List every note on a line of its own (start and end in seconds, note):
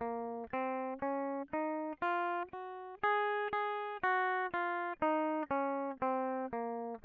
0.02 0.49 A#3
0.55 1.01 C4
1.03 1.48 C#4
1.54 1.96 D#4
2.03 2.48 F4
3.04 3.52 G#4
3.54 4.00 G#4
4.04 4.53 F#4
4.55 4.96 F4
5.03 5.47 D#4
5.52 5.99 C#4
6.03 6.51 C4
6.54 6.99 A#3